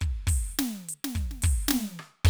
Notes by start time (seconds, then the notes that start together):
0.01 closed hi-hat, kick
0.27 open hi-hat, kick
0.52 hi-hat pedal
0.59 snare
0.89 closed hi-hat
1.04 snare
1.15 closed hi-hat, kick
1.31 snare
1.42 open hi-hat, kick
1.64 hi-hat pedal
1.68 snare
1.71 snare
1.99 cross-stick
2.25 kick, crash